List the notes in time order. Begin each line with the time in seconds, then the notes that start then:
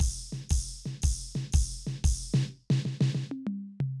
0.00 kick, crash
0.32 snare
0.49 kick, crash
0.86 snare
1.02 kick, crash
1.35 snare
1.52 kick, crash
1.87 snare
2.04 kick, crash
2.34 snare
2.70 snare
2.85 snare
3.01 snare
3.15 snare
3.31 high tom
3.47 mid tom
3.80 floor tom